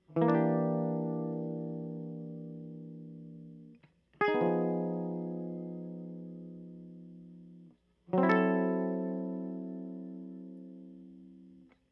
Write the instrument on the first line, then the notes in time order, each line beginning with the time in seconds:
electric guitar
0.18 E3
0.22 A#3
0.29 D4
0.35 G4
4.22 G#4
4.26 D#4 G#4
4.35 B3
4.42 F3
4.49 B2
4.73 B3
8.14 F#3
8.18 C4
8.24 E4
8.30 A4